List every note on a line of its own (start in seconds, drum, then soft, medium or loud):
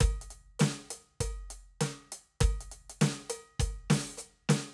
0.01 kick loud
0.01 closed hi-hat loud
0.22 closed hi-hat medium
0.31 closed hi-hat medium
0.60 closed hi-hat loud
0.60 snare loud
0.91 closed hi-hat loud
1.21 kick medium
1.21 closed hi-hat loud
1.51 closed hi-hat medium
1.81 snare loud
1.81 closed hi-hat loud
2.12 closed hi-hat medium
2.41 kick loud
2.41 closed hi-hat loud
2.61 closed hi-hat medium
2.72 closed hi-hat medium
2.90 closed hi-hat medium
3.02 snare loud
3.02 closed hi-hat loud
3.30 closed hi-hat loud
3.60 kick loud
3.60 closed hi-hat loud
3.91 snare loud
3.91 open hi-hat loud
4.18 hi-hat pedal loud
4.50 snare loud
4.50 closed hi-hat loud